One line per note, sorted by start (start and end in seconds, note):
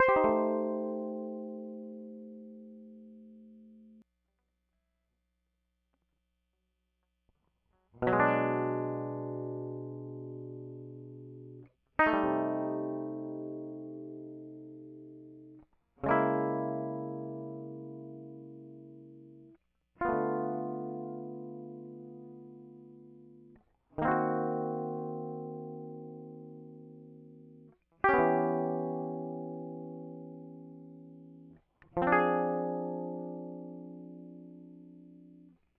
0.00 3.65 C5
0.09 4.10 G4
0.16 4.03 D#4
0.25 4.12 A3
0.31 0.36 E3
8.04 11.67 B2
8.08 11.71 F#3
8.13 11.64 G#3
8.20 11.68 D4
11.99 15.64 D#4
12.07 15.59 A3
12.14 15.65 G3
12.25 15.67 C3
16.05 19.55 C#3
16.05 19.59 G#3
16.09 19.54 A#3
16.09 19.58 E4
20.01 23.58 F4
20.05 23.63 A3
20.05 23.60 B3
20.14 23.63 D3
23.99 27.74 D#3
23.99 27.76 A#3
24.05 27.71 C4
24.05 27.76 F#4
28.04 31.59 G4
28.09 31.58 C#4
28.14 31.61 B3
28.19 31.61 E3
31.97 35.59 F3
32.02 35.59 C4
32.07 35.53 D4
32.12 34.59 G#4